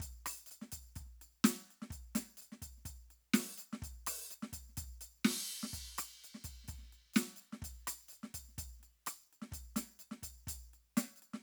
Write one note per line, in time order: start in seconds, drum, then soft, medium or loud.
0.01 kick soft
0.01 percussion medium
0.27 cross-stick medium
0.27 percussion loud
0.47 percussion medium
0.52 percussion soft
0.63 snare soft
0.73 kick soft
0.73 percussion medium
0.97 kick soft
0.97 percussion soft
1.03 kick soft
1.07 snare soft
1.22 percussion soft
1.45 snare loud
1.45 percussion loud
1.72 percussion soft
1.83 snare soft
1.91 kick soft
1.91 percussion medium
2.16 snare medium
2.16 percussion loud
2.38 percussion medium
2.43 percussion soft
2.53 snare soft
2.63 kick soft
2.63 percussion medium
2.78 snare soft
2.86 kick soft
2.86 percussion medium
3.11 percussion soft
3.35 snare loud
3.35 percussion loud
3.59 percussion medium
3.61 percussion soft
3.74 snare soft
3.83 kick soft
3.83 percussion medium
4.08 cross-stick medium
4.08 percussion loud
4.32 percussion soft
4.32 percussion medium
4.44 snare soft
4.54 kick soft
4.54 percussion medium
4.70 snare soft
4.78 kick soft
4.78 percussion medium
4.85 kick soft
5.02 percussion medium
5.26 snare medium
5.26 crash loud
5.46 percussion soft
5.51 percussion soft
5.64 snare soft
5.74 kick soft
5.74 percussion medium
5.99 cross-stick medium
5.99 percussion loud
6.25 percussion soft
6.35 snare soft
6.45 kick soft
6.45 percussion medium
6.65 snare soft
6.69 kick soft
6.69 percussion medium
6.75 kick soft
6.79 snare soft
6.83 snare soft
6.88 snare soft
6.94 percussion soft
7.15 snare medium
7.15 percussion medium
7.18 percussion loud
7.37 percussion medium
7.43 percussion soft
7.54 snare soft
7.63 kick soft
7.63 snare soft
7.63 percussion medium
7.88 cross-stick medium
7.88 percussion loud
8.10 percussion medium
8.14 percussion soft
8.24 snare soft
8.35 kick soft
8.35 percussion medium
8.49 snare soft
8.59 kick soft
8.59 percussion medium
8.81 snare soft
8.81 percussion soft
9.08 cross-stick medium
9.08 percussion medium
9.34 percussion soft
9.43 snare soft
9.52 kick soft
9.52 snare soft
9.52 percussion medium
9.77 snare medium
9.77 percussion loud
10.00 percussion medium
10.02 percussion soft
10.12 snare soft
10.22 kick soft
10.22 snare soft
10.22 percussion medium
10.48 kick soft
10.48 percussion medium
10.75 percussion soft
10.98 snare medium
10.98 percussion loud
11.17 percussion soft
11.23 percussion soft
11.35 snare soft